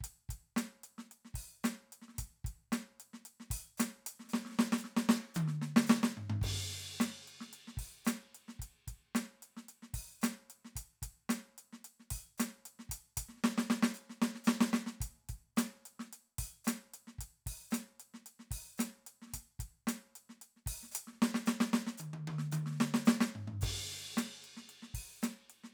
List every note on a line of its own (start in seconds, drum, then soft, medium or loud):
0.01 kick soft
0.01 closed hi-hat medium
0.29 kick soft
0.29 closed hi-hat medium
0.56 snare medium
0.56 closed hi-hat medium
0.84 closed hi-hat medium
0.98 snare soft
1.11 closed hi-hat soft
1.25 snare soft
1.34 kick soft
1.34 open hi-hat medium
1.64 snare medium
1.64 closed hi-hat medium
1.64 hi-hat pedal medium
1.92 closed hi-hat medium
2.02 snare soft
2.08 snare soft
2.14 snare soft
2.18 kick soft
2.18 snare soft
2.18 closed hi-hat medium
2.45 kick soft
2.45 closed hi-hat medium
2.72 snare medium
2.72 closed hi-hat medium
3.00 closed hi-hat medium
3.14 snare soft
3.25 closed hi-hat medium
3.40 snare soft
3.50 kick soft
3.50 open hi-hat loud
3.77 snare medium
3.77 closed hi-hat loud
3.77 hi-hat pedal medium
4.06 closed hi-hat loud
4.20 snare soft
4.24 snare soft
4.28 snare soft
4.28 hi-hat pedal medium
4.34 snare medium
4.45 snare soft
4.49 snare soft
4.52 snare soft
4.55 snare soft
4.72 snare medium
4.78 hi-hat pedal medium
4.84 snare soft
4.97 snare loud
5.09 snare loud
5.34 hi-hat pedal medium
5.34 high tom loud
5.48 snare soft
5.62 snare medium
5.76 snare loud
5.86 snare loud
5.86 hi-hat pedal medium
6.03 snare loud
6.17 floor tom medium
6.30 floor tom loud
6.42 kick soft
6.42 ride loud
7.00 snare loud
7.00 closed hi-hat medium
7.28 closed hi-hat soft
7.41 snare soft
7.53 closed hi-hat medium
7.68 snare soft
7.77 kick soft
7.77 open hi-hat medium
8.05 snare medium
8.05 closed hi-hat loud
8.05 hi-hat pedal medium
8.35 closed hi-hat medium
8.48 snare soft
8.59 kick soft
8.59 closed hi-hat medium
8.88 kick soft
8.88 closed hi-hat medium
9.15 snare medium
9.15 closed hi-hat medium
9.42 closed hi-hat medium
9.57 snare soft
9.69 closed hi-hat medium
9.82 snare soft
9.94 kick soft
9.94 open hi-hat medium
10.22 snare medium
10.22 closed hi-hat loud
10.22 hi-hat pedal medium
10.50 closed hi-hat medium
10.65 snare soft
10.76 kick soft
10.76 closed hi-hat medium
11.02 kick soft
11.02 closed hi-hat medium
11.29 snare medium
11.29 closed hi-hat loud
11.58 closed hi-hat medium
11.73 snare soft
11.84 closed hi-hat medium
12.00 snare soft
12.11 kick soft
12.11 open hi-hat loud
12.38 snare medium
12.38 closed hi-hat loud
12.38 hi-hat pedal medium
12.66 closed hi-hat medium
12.79 snare soft
12.89 kick soft
12.89 closed hi-hat loud
13.17 kick soft
13.17 closed hi-hat loud
13.29 snare soft
13.33 snare soft
13.37 snare soft
13.44 snare loud
13.58 snare medium
13.70 snare loud
13.83 snare loud
13.94 hi-hat pedal medium
14.10 snare soft
14.22 snare loud
14.35 snare soft
14.44 snare loud
14.44 hi-hat pedal medium
14.61 snare loud
14.73 snare loud
14.86 snare medium
15.01 kick soft
15.01 closed hi-hat medium
15.29 kick soft
15.29 open hi-hat medium
15.57 snare loud
15.57 closed hi-hat loud
15.57 hi-hat pedal medium
15.85 closed hi-hat medium
16.00 snare soft
16.13 closed hi-hat medium
16.39 kick soft
16.39 open hi-hat loud
16.65 snare medium
16.65 closed hi-hat loud
16.65 hi-hat pedal medium
16.94 closed hi-hat medium
17.07 snare soft
17.19 kick soft
17.19 closed hi-hat medium
17.46 kick soft
17.46 open hi-hat medium
17.71 snare medium
17.71 closed hi-hat loud
17.71 hi-hat pedal medium
18.00 closed hi-hat medium
18.14 snare soft
18.26 closed hi-hat medium
18.39 snare soft
18.51 kick soft
18.51 open hi-hat loud
18.78 snare medium
18.78 closed hi-hat loud
18.78 hi-hat pedal medium
19.07 closed hi-hat medium
19.22 snare soft
19.27 snare soft
19.30 kick soft
19.30 snare soft
19.34 snare soft
19.34 closed hi-hat loud
19.59 kick soft
19.59 closed hi-hat medium
19.87 snare medium
19.87 closed hi-hat loud
20.16 closed hi-hat medium
20.29 snare soft
20.42 closed hi-hat medium
20.56 snare soft
20.66 kick soft
20.66 open hi-hat loud
20.83 snare soft
20.92 closed hi-hat loud
20.92 hi-hat pedal medium
21.07 snare soft
21.12 snare soft
21.17 snare soft
21.22 snare loud
21.34 snare medium
21.46 snare loud
21.46 hi-hat pedal medium
21.60 snare loud
21.73 snare loud
21.87 snare medium
21.98 hi-hat pedal medium
21.98 high tom medium
22.13 high tom medium
22.27 high tom medium
22.39 snare soft
22.52 hi-hat pedal medium
22.52 high tom loud
22.66 snare soft
22.71 snare soft
22.75 snare soft
22.80 snare loud
22.94 snare loud
23.05 snare loud
23.05 hi-hat pedal medium
23.21 snare loud
23.35 floor tom medium
23.48 floor tom medium
23.61 kick soft
23.61 hi-hat pedal medium
23.61 ride loud
24.17 snare medium
24.17 closed hi-hat medium
24.44 closed hi-hat soft
24.57 snare soft
24.69 closed hi-hat soft
24.82 snare soft
24.94 kick soft
24.94 open hi-hat medium
25.22 snare medium
25.22 closed hi-hat medium
25.22 hi-hat pedal medium
25.50 closed hi-hat soft
25.64 snare soft